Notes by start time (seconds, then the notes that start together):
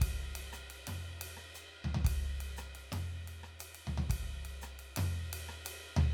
0.01 kick, ride
0.35 ride
0.53 cross-stick, hi-hat pedal
0.70 ride
0.87 mid tom, ride
1.02 hi-hat pedal
1.21 ride
1.37 cross-stick
1.54 hi-hat pedal, ride bell
1.84 floor tom
1.94 floor tom
2.04 kick, ride
2.40 ride
2.56 cross-stick, hi-hat pedal
2.75 ride
2.92 mid tom, ride
3.27 ride
3.43 cross-stick
3.59 hi-hat pedal, ride
3.74 ride
3.87 floor tom
3.97 floor tom
4.09 kick, ride
4.45 ride
4.61 cross-stick, hi-hat pedal, ride
4.79 ride
4.96 mid tom, ride
5.33 ride
5.48 cross-stick
5.65 hi-hat pedal, ride
5.96 floor tom